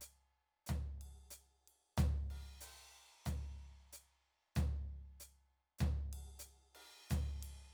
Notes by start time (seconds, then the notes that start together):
0.01 hi-hat pedal
0.66 floor tom, hi-hat pedal
1.01 crash
1.31 hi-hat pedal
1.68 ride
1.97 floor tom, hi-hat pedal
2.30 crash
2.61 hi-hat pedal, crash
3.26 floor tom, hi-hat pedal
3.93 hi-hat pedal
4.55 floor tom, hi-hat pedal
5.20 hi-hat pedal
5.79 floor tom, hi-hat pedal
6.13 crash
6.39 hi-hat pedal
6.75 crash
7.10 floor tom, hi-hat pedal
7.43 ride
7.57 ride